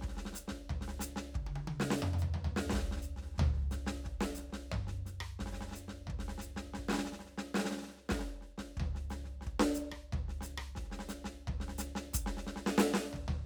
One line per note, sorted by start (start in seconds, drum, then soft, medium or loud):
0.01 kick soft
0.01 snare soft
0.08 snare soft
0.13 snare soft
0.17 snare soft
0.25 snare soft
0.32 snare soft
0.32 hi-hat pedal medium
0.47 kick soft
0.47 snare medium
0.69 kick soft
0.69 floor tom medium
0.81 snare soft
0.88 snare soft
0.99 snare medium
0.99 hi-hat pedal loud
1.16 snare medium
1.34 kick soft
1.34 high tom soft
1.46 high tom medium
1.55 high tom medium
1.67 high tom medium
1.80 snare medium
1.90 snare loud
1.97 hi-hat pedal soft
2.02 mid tom loud
2.13 mid tom medium
2.18 floor tom medium
2.18 hi-hat pedal soft
2.34 floor tom medium
2.44 floor tom medium
2.56 snare medium
2.69 kick medium
2.69 snare medium
2.74 snare medium
2.78 snare soft
2.83 snare soft
2.91 snare soft
2.96 snare soft
3.02 hi-hat pedal soft
3.16 kick soft
3.16 snare soft
3.21 snare soft
3.26 snare soft
3.30 snare soft
3.34 kick soft
3.34 snare soft
3.38 snare soft
3.38 floor tom loud
3.53 snare soft
3.56 snare soft
3.60 snare soft
3.71 snare soft
3.71 hi-hat pedal soft
3.86 kick soft
3.86 snare medium
4.04 kick soft
4.04 snare soft
4.21 snare medium
4.35 snare soft
4.35 hi-hat pedal medium
4.50 kick soft
4.50 snare medium
4.71 kick soft
4.71 floor tom medium
4.87 snare soft
5.05 snare soft
5.05 hi-hat pedal soft
5.20 kick soft
5.20 cross-stick medium
5.39 kick soft
5.39 snare soft
5.46 snare soft
5.51 snare soft
5.53 snare soft
5.61 snare soft
5.67 snare soft
5.71 snare soft
5.75 hi-hat pedal medium
5.88 kick soft
5.88 snare soft
6.07 kick soft
6.07 floor tom medium
6.19 snare soft
6.28 snare soft
6.38 snare soft
6.38 hi-hat pedal medium
6.56 kick soft
6.56 snare medium
6.73 snare medium
6.78 kick soft
6.88 snare medium
6.91 snare medium
6.93 snare medium
6.98 snare medium
7.05 snare soft
7.12 snare soft
7.19 snare soft
7.25 snare soft
7.31 snare soft
7.37 snare soft
7.37 snare medium
7.54 snare medium
7.58 snare medium
7.64 snare medium
7.70 snare soft
7.70 snare medium
7.77 snare soft
7.82 snare soft
7.87 snare soft
7.92 snare soft
7.96 snare soft
8.00 snare soft
8.04 snare soft
8.08 kick soft
8.08 snare soft
8.08 snare medium
8.14 cross-stick medium
8.19 snare soft
8.23 snare soft
8.26 snare soft
8.35 snare soft
8.41 snare soft
8.50 snare soft
8.58 kick soft
8.58 snare medium
8.77 kick soft
8.77 floor tom medium
8.95 snare soft
9.10 snare soft
9.10 hi-hat pedal soft
9.24 kick soft
9.24 snare soft
9.41 snare soft
9.46 kick soft
9.59 snare medium
9.74 snare soft
9.74 hi-hat pedal medium
9.91 kick soft
9.91 cross-stick medium
10.12 kick soft
10.12 floor tom medium
10.28 snare soft
10.41 snare soft
10.41 hi-hat pedal medium
10.57 kick soft
10.57 cross-stick medium
10.75 kick soft
10.75 snare soft
10.84 snare soft
10.90 snare soft
10.99 snare soft
11.08 snare medium
11.08 hi-hat pedal medium
11.24 kick soft
11.24 snare medium
11.47 kick soft
11.47 floor tom medium
11.60 snare soft
11.68 snare soft
11.78 snare medium
11.78 hi-hat pedal medium
11.95 snare medium
12.13 kick medium
12.13 snare soft
12.13 hi-hat pedal loud
12.23 kick soft
12.23 snare medium
12.37 snare soft
12.46 snare medium
12.56 snare soft
12.66 snare medium
12.78 snare loud
12.78 hi-hat pedal medium
12.94 snare loud
13.13 kick soft
13.13 floor tom medium
13.28 floor tom medium